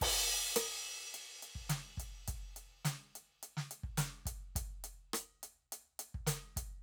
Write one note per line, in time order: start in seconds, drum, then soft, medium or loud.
0.02 kick medium
0.02 crash loud
0.57 cross-stick medium
0.57 closed hi-hat loud
0.87 closed hi-hat soft
1.15 closed hi-hat medium
1.43 closed hi-hat medium
1.56 kick soft
1.70 snare medium
1.70 closed hi-hat medium
1.98 kick medium
1.98 closed hi-hat medium
2.28 kick medium
2.28 closed hi-hat medium
2.57 closed hi-hat medium
2.85 closed hi-hat medium
2.85 snare medium
3.16 closed hi-hat medium
3.43 closed hi-hat medium
3.58 snare medium
3.71 closed hi-hat medium
3.84 kick medium
3.98 closed hi-hat loud
3.98 snare medium
4.26 kick medium
4.26 closed hi-hat medium
4.56 kick medium
4.56 closed hi-hat medium
4.84 closed hi-hat medium
5.14 closed hi-hat loud
5.14 cross-stick medium
5.44 closed hi-hat medium
5.73 closed hi-hat medium
6.00 closed hi-hat medium
6.15 kick medium
6.27 closed hi-hat loud
6.27 snare medium
6.57 kick medium
6.57 closed hi-hat medium